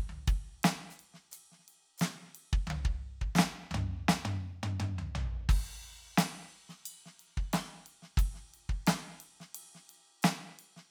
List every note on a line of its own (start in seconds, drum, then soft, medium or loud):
0.09 mid tom medium
0.28 kick loud
0.28 ride medium
0.63 snare loud
0.63 hi-hat pedal medium
0.63 ride medium
0.90 hi-hat pedal soft
0.99 ride soft
1.14 snare soft
1.32 hi-hat pedal medium
1.32 ride medium
1.52 snare soft
1.59 snare soft
1.68 ride soft
1.98 snare loud
1.98 hi-hat pedal medium
1.98 ride medium
2.35 ride medium
2.53 kick loud
2.67 mid tom loud
2.70 mid tom loud
2.85 kick medium
3.21 kick medium
3.35 kick soft
3.35 snare loud
3.39 snare loud
3.71 mid tom loud
3.71 high tom loud
4.09 snare loud
4.25 high tom loud
4.63 high tom loud
4.80 high tom loud
4.99 mid tom medium
5.15 floor tom loud
5.49 kick loud
5.49 crash medium
6.18 snare loud
6.18 ride loud
6.69 snare soft
6.86 ride bell medium
7.06 snare soft
7.20 ride soft
7.37 kick medium
7.53 snare loud
7.53 ride medium
7.64 snare soft
7.86 ride soft
8.02 snare soft
8.17 kick loud
8.17 ride medium
8.34 snare soft
8.54 ride soft
8.69 kick medium
8.87 snare loud
8.87 ride medium
9.20 ride medium
9.40 snare soft
9.55 ride medium
9.75 snare soft
9.89 ride soft
10.22 snare loud
10.22 hi-hat pedal medium
10.22 ride medium
10.59 ride soft
10.77 snare soft